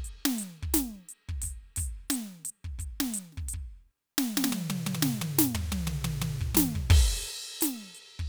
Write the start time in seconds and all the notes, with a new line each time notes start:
0.01 closed hi-hat, kick
0.25 snare
0.39 closed hi-hat
0.63 kick
0.74 closed hi-hat, snare
1.09 closed hi-hat
1.29 kick
1.42 open hi-hat, kick
1.76 open hi-hat, kick
2.08 closed hi-hat, snare, hi-hat pedal
2.40 snare
2.45 closed hi-hat
2.65 kick
2.79 closed hi-hat, kick
3.00 snare
3.14 closed hi-hat
3.32 snare
3.37 kick, snare
3.47 closed hi-hat, snare
3.54 kick
4.18 snare
4.37 snare
4.44 snare
4.52 high tom
4.70 high tom
4.87 high tom
4.95 mid tom
5.03 snare
5.22 mid tom
5.39 snare
5.55 floor tom
5.72 high tom
5.87 mid tom
6.04 mid tom
6.22 mid tom
6.41 kick
6.55 snare, high tom
6.75 kick
6.90 kick, crash
7.27 open hi-hat
7.61 closed hi-hat, snare
7.95 closed hi-hat
8.19 kick